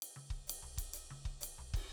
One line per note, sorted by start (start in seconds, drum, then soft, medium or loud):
0.02 hi-hat pedal soft
0.02 ride medium
0.16 high tom soft
0.30 kick soft
0.47 hi-hat pedal soft
0.47 ride loud
0.62 floor tom soft
0.77 kick soft
0.77 ride medium
0.94 hi-hat pedal medium
0.94 ride medium
1.10 high tom soft
1.25 kick soft
1.41 hi-hat pedal medium
1.41 ride medium
1.58 floor tom soft
1.74 kick medium
1.74 ride medium